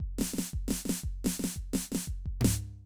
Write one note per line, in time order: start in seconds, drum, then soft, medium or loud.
0.00 kick soft
0.18 snare medium
0.21 snare loud
0.33 snare medium
0.38 snare medium
0.53 kick soft
0.68 snare medium
0.71 snare medium
0.85 snare medium
0.89 snare loud
1.04 kick soft
1.24 snare medium
1.26 snare loud
1.39 snare medium
1.44 snare medium
1.56 kick soft
1.73 snare medium
1.92 snare medium
1.95 snare medium
2.07 kick soft
2.26 kick soft
2.41 snare loud
2.41 floor tom loud